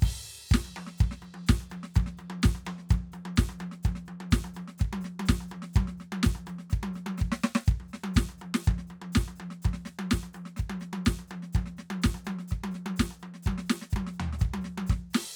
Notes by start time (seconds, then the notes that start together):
0.01 kick, hi-hat pedal, crash
0.24 hi-hat pedal
0.49 kick, hi-hat pedal
0.55 snare
0.66 high tom
0.74 hi-hat pedal, high tom
0.87 snare
0.99 kick, hi-hat pedal, high tom
1.12 snare
1.22 hi-hat pedal, high tom
1.35 high tom
1.47 kick, snare, hi-hat pedal
1.61 high tom
1.71 hi-hat pedal, high tom
1.84 snare
1.95 kick, hi-hat pedal, high tom
2.07 snare
2.18 hi-hat pedal, high tom
2.31 high tom
2.43 kick, snare, hi-hat pedal
2.56 high tom
2.66 hi-hat pedal, high tom
2.79 snare
2.90 kick, hi-hat pedal, high tom
3.13 hi-hat pedal, high tom
3.26 high tom
3.37 kick, snare, hi-hat pedal
3.50 high tom
3.60 hi-hat pedal, high tom
3.72 snare
3.84 kick, hi-hat pedal, high tom
3.96 snare
4.06 hi-hat pedal, high tom
4.21 high tom
4.32 kick, snare, hi-hat pedal
4.45 high tom
4.54 hi-hat pedal, high tom
4.68 snare
4.79 kick, snare, hi-hat pedal
4.94 high tom
5.02 snare, hi-hat pedal
5.20 high tom
5.26 kick, snare, hi-hat pedal
5.41 high tom
5.49 hi-hat pedal, high tom
5.63 snare
5.74 kick, hi-hat pedal, high tom
5.88 snare
5.98 snare, hi-hat pedal
6.13 high tom
6.24 kick, snare, hi-hat pedal
6.36 high tom
6.47 hi-hat pedal, high tom
6.59 snare
6.71 kick, snare, hi-hat pedal
6.84 high tom
6.94 snare, hi-hat pedal
7.07 high tom
7.18 kick, snare, hi-hat pedal
7.33 snare
7.41 snare, hi-hat pedal
7.56 snare
7.66 kick, hi-hat pedal
7.81 high tom
7.89 hi-hat pedal
7.94 snare
8.04 high tom
8.15 kick, snare, hi-hat pedal
8.30 high tom
8.39 hi-hat pedal, high tom
8.55 snare
8.64 hi-hat pedal
8.68 kick, high tom
8.79 snare
8.88 hi-hat pedal, high tom
9.02 high tom
9.13 snare, hi-hat pedal
9.18 kick
9.29 high tom
9.36 hi-hat pedal
9.41 high tom
9.51 snare
9.63 kick, hi-hat pedal, high tom
9.74 snare
9.86 snare, hi-hat pedal
10.00 high tom
10.11 kick, snare, hi-hat pedal
10.24 high tom
10.34 hi-hat pedal, high tom
10.46 snare
10.57 kick, snare, hi-hat pedal
10.70 high tom
10.80 snare, hi-hat pedal
10.94 high tom
11.06 kick, snare, hi-hat pedal
11.20 high tom
11.28 hi-hat pedal, high tom
11.43 snare
11.53 kick, hi-hat pedal, high tom
11.67 snare
11.78 snare, hi-hat pedal
11.91 high tom
12.03 kick, snare, hi-hat pedal
12.15 high tom
12.25 hi-hat pedal, high tom
12.39 snare
12.48 snare, hi-hat pedal
12.53 kick
12.64 high tom
12.72 snare, hi-hat pedal
12.87 high tom
12.97 kick, snare, hi-hat pedal
13.11 high tom
13.20 hi-hat pedal, high tom
13.35 snare
13.43 kick, hi-hat pedal
13.48 high tom
13.59 snare
13.67 snare, hi-hat pedal
13.82 snare
13.91 kick, hi-hat pedal
13.97 high tom
14.07 snare
14.14 hi-hat pedal
14.21 floor tom
14.33 snare
14.39 kick, snare, hi-hat pedal
14.54 high tom
14.62 snare, hi-hat pedal
14.78 high tom
14.87 kick, snare, hi-hat pedal
15.11 hi-hat pedal, crash
15.15 snare